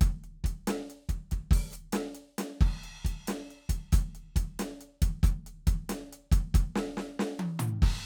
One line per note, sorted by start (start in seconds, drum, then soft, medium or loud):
0.01 kick loud
0.01 closed hi-hat loud
0.01 hi-hat pedal soft
0.24 closed hi-hat soft
0.45 kick medium
0.45 closed hi-hat medium
0.68 snare loud
0.68 closed hi-hat loud
0.90 closed hi-hat medium
1.10 kick medium
1.10 closed hi-hat medium
1.32 kick medium
1.32 closed hi-hat medium
1.51 kick loud
1.51 open hi-hat loud
1.73 hi-hat pedal loud
1.93 snare loud
1.93 closed hi-hat loud
2.15 closed hi-hat medium
2.39 snare loud
2.39 closed hi-hat loud
2.61 kick loud
2.61 crash medium
2.84 closed hi-hat medium
3.05 kick medium
3.05 closed hi-hat loud
3.28 snare loud
3.28 closed hi-hat loud
3.51 closed hi-hat soft
3.70 kick medium
3.70 closed hi-hat loud
3.93 closed hi-hat loud
3.93 kick loud
4.15 closed hi-hat medium
4.37 kick loud
4.37 closed hi-hat loud
4.60 snare loud
4.60 closed hi-hat loud
4.81 closed hi-hat medium
5.02 kick loud
5.02 closed hi-hat loud
5.24 kick loud
5.24 hi-hat pedal medium
5.24 open hi-hat loud
5.47 closed hi-hat medium
5.68 kick loud
5.68 closed hi-hat loud
5.90 snare loud
5.90 closed hi-hat loud
6.13 closed hi-hat medium
6.32 kick loud
6.32 closed hi-hat loud
6.55 kick loud
6.55 closed hi-hat loud
6.76 snare loud
6.98 snare loud
7.20 snare loud
7.40 high tom loud
7.60 mid tom loud
7.83 kick loud
7.83 crash medium
7.83 crash loud